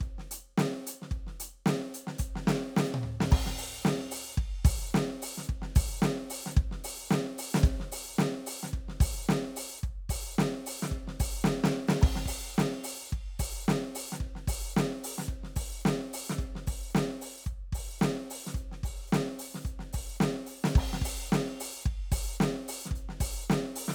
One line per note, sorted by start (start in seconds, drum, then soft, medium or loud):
0.01 kick medium
0.01 closed hi-hat soft
0.19 snare soft
0.31 closed hi-hat loud
0.58 snare loud
0.87 closed hi-hat loud
1.02 snare soft
1.11 kick medium
1.11 closed hi-hat soft
1.27 snare soft
1.40 closed hi-hat loud
1.66 snare loud
1.95 closed hi-hat loud
2.07 snare medium
2.19 closed hi-hat loud
2.19 kick medium
2.36 snare medium
2.48 snare loud
2.77 snare loud
2.85 hi-hat pedal medium
2.94 high tom loud
3.04 floor tom medium
3.21 snare loud
3.32 kick loud
3.32 crash loud
3.47 snare medium
3.58 open hi-hat loud
3.82 snare loud
3.82 hi-hat pedal medium
4.12 open hi-hat loud
4.34 kick loud
4.34 hi-hat pedal medium
4.65 open hi-hat loud
4.65 kick loud
4.90 hi-hat pedal medium
4.95 snare loud
5.22 open hi-hat loud
5.38 snare medium
5.45 closed hi-hat soft
5.45 hi-hat pedal medium
5.49 kick medium
5.62 snare medium
5.76 open hi-hat loud
5.76 kick loud
6.00 snare loud
6.00 hi-hat pedal medium
6.30 open hi-hat loud
6.46 snare medium
6.52 hi-hat pedal medium
6.57 kick loud
6.57 closed hi-hat soft
6.72 snare soft
6.84 open hi-hat loud
7.09 snare loud
7.09 hi-hat pedal medium
7.39 open hi-hat loud
7.55 snare loud
7.55 hi-hat pedal medium
7.64 kick loud
7.64 closed hi-hat medium
7.80 snare medium
7.92 open hi-hat loud
8.16 snare loud
8.16 hi-hat pedal medium
8.47 open hi-hat loud
8.63 snare medium
8.68 hi-hat pedal medium
8.74 kick medium
8.74 closed hi-hat soft
8.89 snare soft
9.01 open hi-hat loud
9.01 kick loud
9.26 snare loud
9.26 hi-hat pedal medium
9.57 open hi-hat loud
9.79 closed hi-hat soft
9.79 hi-hat pedal medium
9.84 kick medium
10.10 open hi-hat loud
10.10 kick medium
10.35 hi-hat pedal medium
10.39 snare loud
10.67 open hi-hat loud
10.83 snare medium
10.87 hi-hat pedal medium
10.92 kick medium
10.92 closed hi-hat soft
11.08 snare medium
11.20 open hi-hat loud
11.20 kick medium
11.42 snare loud
11.42 hi-hat pedal medium
11.64 snare loud
11.88 snare loud
11.88 hi-hat pedal medium
12.02 kick loud
12.02 crash loud
12.16 snare medium
12.26 open hi-hat loud
12.26 kick medium
12.55 snare loud
12.55 hi-hat pedal medium
12.84 open hi-hat loud
13.10 kick medium
13.10 hi-hat pedal medium
13.40 open hi-hat loud
13.40 kick medium
13.65 snare loud
13.65 hi-hat pedal medium
13.95 open hi-hat loud
14.12 snare medium
14.12 hi-hat pedal medium
14.21 kick medium
14.36 snare soft
14.48 open hi-hat loud
14.48 kick medium
14.73 hi-hat pedal medium
14.77 snare loud
15.04 open hi-hat loud
15.19 snare medium
15.26 closed hi-hat soft
15.26 kick medium
15.26 hi-hat pedal medium
15.44 snare soft
15.56 open hi-hat loud
15.56 kick medium
15.81 hi-hat pedal medium
15.86 snare loud
16.14 open hi-hat loud
16.30 snare medium
16.30 hi-hat pedal medium
16.39 closed hi-hat soft
16.39 kick medium
16.56 snare medium
16.67 open hi-hat medium
16.67 kick medium
16.90 hi-hat pedal medium
16.95 snare loud
17.22 open hi-hat loud
17.44 closed hi-hat soft
17.44 kick medium
17.44 hi-hat pedal medium
17.73 open hi-hat loud
17.73 kick medium
17.99 snare loud
17.99 hi-hat pedal medium
18.31 open hi-hat loud
18.47 snare medium
18.52 kick medium
18.52 hi-hat pedal medium
18.57 closed hi-hat soft
18.72 snare soft
18.84 open hi-hat medium
18.84 kick medium
19.09 hi-hat pedal soft
19.13 snare loud
19.39 open hi-hat loud
19.55 snare medium
19.62 closed hi-hat medium
19.62 kick medium
19.62 hi-hat pedal medium
19.80 snare soft
19.93 open hi-hat loud
19.93 kick medium
20.16 hi-hat pedal medium
20.21 snare loud
20.47 open hi-hat medium
20.64 snare loud
20.70 hi-hat pedal medium
20.76 kick loud
20.76 crash loud
20.94 snare medium
21.02 open hi-hat loud
21.02 kick medium
21.29 snare loud
21.29 hi-hat pedal medium
21.60 open hi-hat loud
21.83 kick medium
21.83 hi-hat pedal medium
22.12 open hi-hat loud
22.12 kick loud
22.36 hi-hat pedal soft
22.41 snare loud
22.69 open hi-hat loud
22.86 snare medium
22.86 hi-hat pedal medium
22.91 kick medium
22.96 closed hi-hat soft
23.09 snare soft
23.21 open hi-hat loud
23.21 kick medium
23.43 hi-hat pedal soft
23.50 snare loud
23.76 open hi-hat loud
23.89 snare medium